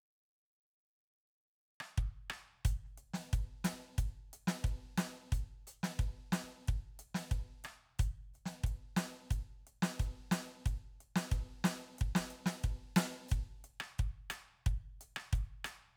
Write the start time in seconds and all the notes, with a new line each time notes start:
1.80 cross-stick
1.97 kick
2.30 cross-stick
2.65 closed hi-hat, kick
2.84 snare
2.97 closed hi-hat
3.13 snare
3.33 kick, closed hi-hat
3.64 snare, closed hi-hat
3.72 kick
3.98 kick, closed hi-hat
4.33 closed hi-hat
4.47 snare
4.64 kick, closed hi-hat
4.97 snare, closed hi-hat
5.32 closed hi-hat, kick
5.67 closed hi-hat
5.83 snare
5.99 kick, closed hi-hat
6.32 snare, closed hi-hat
6.43 kick
6.67 kick, closed hi-hat
6.99 closed hi-hat
7.14 snare
7.31 kick, closed hi-hat
7.64 cross-stick, closed hi-hat
7.99 open hi-hat, kick
8.34 closed hi-hat, hi-hat pedal
8.46 snare
8.63 kick, closed hi-hat
8.96 snare, closed hi-hat
9.31 kick, closed hi-hat
9.67 closed hi-hat
9.82 snare
9.99 closed hi-hat, kick
10.31 snare, closed hi-hat
10.66 kick, closed hi-hat
11.00 closed hi-hat
11.16 snare
11.31 kick, closed hi-hat
11.64 snare, closed hi-hat
11.98 kick, closed hi-hat
12.15 snare
12.30 closed hi-hat
12.46 snare
12.63 kick, closed hi-hat
12.96 snare, open hi-hat
13.28 kick, closed hi-hat, hi-hat pedal
13.64 closed hi-hat
13.80 cross-stick
13.98 kick, closed hi-hat
14.30 cross-stick, closed hi-hat
14.66 kick, closed hi-hat
15.01 closed hi-hat
15.16 cross-stick
15.33 kick, closed hi-hat
15.64 cross-stick, closed hi-hat